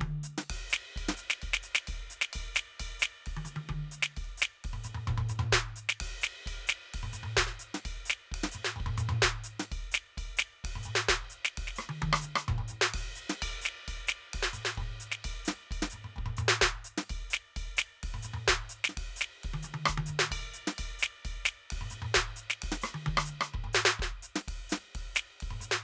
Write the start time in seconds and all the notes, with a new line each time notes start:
0.01 kick, high tom
0.24 hi-hat pedal
0.38 snare
0.50 kick, ride
0.70 snare, hi-hat pedal
0.97 kick, ride bell
1.04 kick
1.09 snare
1.17 hi-hat pedal, ride
1.30 snare
1.42 kick, ride bell
1.54 snare
1.63 hi-hat pedal, ride
1.75 snare
1.88 kick, ride bell
2.11 hi-hat pedal
2.22 snare
2.33 kick, ride bell
2.55 snare, hi-hat pedal
2.80 kick, ride bell
3.00 snare, hi-hat pedal
3.26 kick, ride
3.37 high tom
3.45 hi-hat pedal, high tom
3.57 high tom
3.69 kick, high tom
3.92 hi-hat pedal
4.03 snare
4.17 kick, ride bell
4.25 ride
4.38 hi-hat pedal
4.42 snare
4.65 kick, ride
4.74 mid tom
4.84 hi-hat pedal, mid tom
4.95 mid tom
5.08 kick, mid tom
5.18 mid tom
5.29 hi-hat pedal, mid tom
5.40 mid tom
5.53 kick, snare
5.76 hi-hat pedal
5.90 snare
6.01 kick, ride
6.22 snare, hi-hat pedal
6.47 kick, ride bell
6.68 snare, hi-hat pedal
6.94 kick, ride
7.03 mid tom
7.14 hi-hat pedal, mid tom
7.24 mid tom
7.37 kick, snare
7.44 kick
7.60 hi-hat pedal
7.75 snare
7.86 kick, ride bell
8.06 hi-hat pedal
8.10 snare
8.32 kick, ride
8.44 snare
8.52 hi-hat pedal, mid tom
8.65 snare
8.77 mid tom
8.81 kick
8.98 hi-hat pedal, mid tom
9.09 mid tom
9.23 kick, snare
9.44 hi-hat pedal
9.60 snare
9.72 kick, ride bell
9.79 kick
9.92 snare, hi-hat pedal
10.18 kick, ride bell
10.24 kick
10.37 snare, hi-hat pedal
10.65 kick, ride
10.76 mid tom
10.83 hi-hat pedal
10.96 snare
11.09 kick, snare
11.30 hi-hat pedal
11.45 snare
11.58 kick, ride
11.68 snare
11.77 cross-stick, hi-hat pedal
11.90 high tom
12.02 kick, high tom
12.13 cross-stick
12.22 hi-hat pedal, high tom
12.36 cross-stick
12.49 kick, mid tom
12.56 kick, mid tom
12.68 hi-hat pedal, mid tom
12.82 snare
12.94 kick, ride
13.16 hi-hat pedal
13.30 snare
13.43 kick, ride bell
13.62 snare, hi-hat pedal
13.88 kick, ride bell
14.08 snare, hi-hat pedal
14.34 kick, ride
14.43 snare
14.54 hi-hat pedal, mid tom
14.65 snare
14.76 kick, mid tom, ride
14.84 kick
15.00 hi-hat pedal
15.12 snare
15.25 kick, ride bell
15.46 snare, hi-hat pedal
15.71 kick, ride bell
15.83 snare
15.91 hi-hat pedal, mid tom
16.05 mid tom
16.17 kick, mid tom
16.25 kick, mid tom
16.37 hi-hat pedal, mid tom
16.49 snare
16.62 kick, snare
16.85 hi-hat pedal
16.98 snare
17.10 kick, ride bell
17.31 snare, hi-hat pedal
17.57 kick, ride bell
17.77 snare, hi-hat pedal
18.04 kick, ride
18.15 mid tom
18.23 hi-hat pedal, mid tom
18.34 mid tom
18.48 kick, snare
18.55 kick
18.70 hi-hat pedal
18.85 snare
18.90 snare
18.98 kick, ride
19.17 hi-hat pedal
19.22 snare
19.44 kick, ride
19.54 high tom
19.63 hi-hat pedal, high tom
19.74 high tom
19.86 kick, cross-stick
19.95 kick, high tom
20.07 hi-hat pedal, mid tom
20.20 snare
20.32 kick, ride bell
20.54 hi-hat pedal
20.68 snare
20.79 kick, ride bell
21.00 snare, hi-hat pedal
21.25 kick, ride bell
21.46 snare, hi-hat pedal
21.71 kick, ride
21.79 kick, mid tom
21.91 hi-hat pedal
22.02 mid tom
22.15 kick, snare
22.26 mid tom
22.37 hi-hat pedal
22.51 snare
22.62 kick, ride
22.72 snare
22.82 cross-stick, hi-hat pedal
22.95 high tom
23.07 kick, high tom
23.18 cross-stick
23.26 hi-hat pedal, high tom
23.41 cross-stick
23.54 kick, mid tom
23.64 mid tom
23.74 snare, hi-hat pedal
23.83 snare, ride
24.00 kick, snare
24.06 kick
24.09 kick
24.23 hi-hat pedal
24.36 snare
24.48 kick, ride
24.70 snare, hi-hat pedal
24.96 kick, ride
25.16 snare, hi-hat pedal
25.41 kick, ride
25.51 mid tom
25.62 hi-hat pedal
25.72 snare